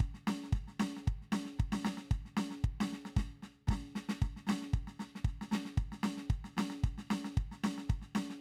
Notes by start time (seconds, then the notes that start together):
0.01 kick, snare
0.15 snare
0.28 snare
0.44 snare
0.53 kick, snare
0.69 snare
0.80 snare
0.97 snare
1.08 kick, snare
1.22 snare
1.33 snare
1.46 snare
1.60 kick, snare
1.73 snare
1.86 snare
1.98 snare
2.12 kick, snare
2.26 snare
2.38 snare
2.51 snare
2.65 kick, snare
2.81 snare
2.93 snare
3.06 snare
3.17 kick, snare
3.43 snare
3.68 kick, snare
3.71 snare
3.96 snare
4.10 snare
4.23 kick, snare
4.37 snare
4.48 snare
4.50 snare
4.63 snare
4.74 kick, snare
4.88 snare
5.00 snare
5.16 snare
5.25 kick, snare
5.42 snare
5.54 snare
5.66 snare
5.78 kick, snare
5.93 snare
6.04 snare
6.18 snare
6.31 kick, snare
6.45 snare
6.58 snare
6.71 snare
6.85 kick, snare
6.99 snare
7.11 snare
7.25 snare
7.38 kick, snare
7.52 snare
7.65 snare
7.79 snare
7.90 kick, snare
8.03 snare
8.16 snare
8.31 snare